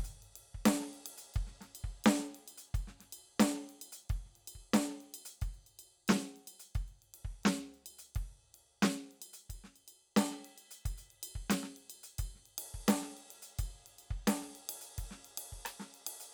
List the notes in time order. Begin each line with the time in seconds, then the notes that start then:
0.05 open hi-hat
0.23 ride
0.36 ride
0.55 kick
0.66 snare, ride
0.75 snare
0.81 cross-stick, snare
0.94 ride
1.06 ride
1.18 closed hi-hat
1.35 kick, ride bell
1.47 snare
1.61 snare, ride
1.76 ride bell
1.84 kick
2.05 snare, ride bell
2.20 snare
2.35 ride
2.48 ride bell
2.58 closed hi-hat
2.75 kick, ride bell
2.88 snare
3.01 snare, ride
3.13 ride bell
3.40 snare, ride bell
3.55 snare
3.70 ride
3.82 ride bell
3.93 closed hi-hat
4.10 kick, ride
4.26 snare
4.36 snare, ride
4.48 ride bell
4.56 kick
4.74 snare, ride bell
4.89 snare
5.01 ride
5.15 ride bell
5.26 closed hi-hat
5.42 kick, ride bell
5.55 closed hi-hat
5.67 ride bell
5.80 ride bell
6.09 snare, ride bell
6.37 ride
6.48 ride bell
6.60 closed hi-hat
6.75 kick, ride bell
6.88 closed hi-hat
7.03 ride
7.15 ride
7.25 kick
7.44 snare, ride, floor tom
7.75 ride bell
7.87 ride bell
7.99 closed hi-hat
8.16 kick, snare, floor tom, ride
8.55 ride
8.83 snare, ride bell
9.12 ride
9.22 ride bell
9.34 closed hi-hat
9.50 kick, ride bell
9.64 snare
9.76 ride bell
9.88 ride bell
10.17 snare, ride bell
10.31 snare
10.45 ride
10.58 ride bell
10.71 closed hi-hat
10.86 kick, ride bell
10.98 closed hi-hat
11.11 ride
11.24 ride bell
11.36 kick
11.50 snare, ride bell
11.64 snare
11.77 ride
11.90 ride bell
12.04 closed hi-hat
12.19 kick, ride bell
12.36 snare
12.46 ride
12.59 ride
12.75 kick
12.89 snare, ride
13.02 snare
13.17 ride
13.31 ride
13.43 closed hi-hat
13.56 kick, closed hi-hat, ride bell
13.87 ride
13.99 ride bell
14.11 kick
14.28 snare, ride
14.41 snare
14.56 ride
14.70 ride
14.82 closed hi-hat
14.99 kick, ride
15.11 snare
15.25 ride
15.38 ride
15.53 kick
15.66 cross-stick, ride
15.80 snare
15.95 ride
16.07 ride
16.21 closed hi-hat